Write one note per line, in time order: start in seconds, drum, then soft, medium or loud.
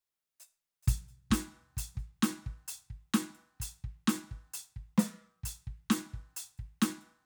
0.40 hi-hat pedal medium
0.83 hi-hat pedal soft
0.88 closed hi-hat loud
0.88 kick loud
1.08 closed hi-hat soft
1.31 closed hi-hat loud
1.31 kick medium
1.31 snare loud
1.77 closed hi-hat loud
1.77 kick medium
1.95 closed hi-hat soft
1.95 kick medium
1.95 snare soft
2.22 closed hi-hat loud
2.22 snare loud
2.46 kick soft
2.68 closed hi-hat loud
2.90 kick soft
3.14 closed hi-hat loud
3.14 snare loud
3.35 closed hi-hat soft
3.60 closed hi-hat loud
3.60 kick soft
3.84 kick soft
4.07 closed hi-hat loud
4.07 snare loud
4.31 kick soft
4.54 closed hi-hat loud
4.76 kick soft
4.76 closed hi-hat soft
4.98 closed hi-hat loud
4.98 snare loud
5.43 closed hi-hat loud
5.43 kick soft
5.67 kick soft
5.67 closed hi-hat soft
5.90 closed hi-hat loud
5.90 snare loud
6.14 kick soft
6.36 closed hi-hat loud
6.58 kick soft
6.58 closed hi-hat soft
6.82 closed hi-hat loud
6.82 snare loud
7.01 closed hi-hat soft